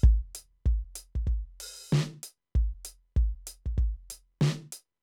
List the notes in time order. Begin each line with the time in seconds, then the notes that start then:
0.01 kick, hi-hat pedal
0.35 closed hi-hat
0.66 kick
0.96 closed hi-hat
1.15 kick
1.27 kick
1.60 open hi-hat
1.91 snare, hi-hat pedal
2.23 closed hi-hat
2.55 kick
2.85 closed hi-hat
3.16 kick
3.47 closed hi-hat
3.66 kick
3.78 kick
4.10 open hi-hat
4.41 snare, hi-hat pedal
4.72 closed hi-hat